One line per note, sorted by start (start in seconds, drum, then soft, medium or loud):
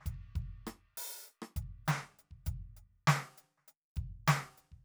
0.01 snare soft
0.01 hi-hat pedal soft
0.06 closed hi-hat medium
0.06 kick soft
0.14 kick soft
0.35 kick soft
0.35 closed hi-hat soft
0.42 kick soft
0.67 closed hi-hat medium
0.67 cross-stick medium
0.97 open hi-hat loud
1.23 hi-hat pedal soft
1.27 closed hi-hat soft
1.42 cross-stick medium
1.56 closed hi-hat medium
1.56 kick soft
1.62 kick soft
1.85 closed hi-hat loud
1.85 snare loud
1.85 hi-hat pedal soft
2.19 closed hi-hat soft
2.31 kick soft
2.45 closed hi-hat medium
2.45 kick soft
2.45 hi-hat pedal soft
2.77 closed hi-hat soft
3.07 closed hi-hat medium
3.07 snare loud
3.38 closed hi-hat medium
3.57 snare soft
3.68 closed hi-hat medium
3.96 kick soft
3.96 closed hi-hat soft
4.26 closed hi-hat loud
4.26 snare loud
4.26 hi-hat pedal soft
4.57 closed hi-hat soft
4.71 kick soft